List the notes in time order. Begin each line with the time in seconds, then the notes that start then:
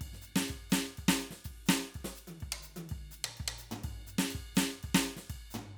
0.01 kick, ride bell
0.08 kick
0.14 snare
0.22 hi-hat pedal, ride
0.36 snare
0.49 kick, ride bell
0.56 kick
0.70 snare, hi-hat pedal
0.93 hi-hat pedal
0.98 kick, ride bell
1.04 kick
1.09 snare
1.19 hi-hat pedal, ride
1.31 snare
1.45 kick, ride
1.51 kick
1.66 snare, hi-hat pedal
1.95 kick, ride bell
2.01 kick, snare
2.16 hi-hat pedal, ride
2.28 high tom
2.41 kick, ride bell
2.48 kick
2.53 high tom
2.63 hi-hat pedal, ride
2.77 high tom
2.90 kick, ride bell
2.98 kick
3.11 hi-hat pedal, ride
3.25 mid tom
3.38 kick, ride bell
3.46 kick, mid tom
3.58 hi-hat pedal, ride
3.72 floor tom
3.84 kick, ride bell
3.91 kick
4.07 hi-hat pedal, ride
4.19 snare
4.30 hi-hat pedal, ride bell
4.35 kick
4.41 kick
4.55 snare, hi-hat pedal
4.83 kick, ride bell
4.90 kick
4.95 snare
5.03 hi-hat pedal
5.17 snare
5.30 kick, ride bell
5.36 kick
5.51 floor tom, hi-hat pedal